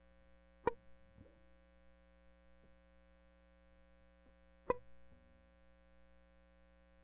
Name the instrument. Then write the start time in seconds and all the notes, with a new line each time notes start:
electric guitar
0.68 A#4
4.71 B4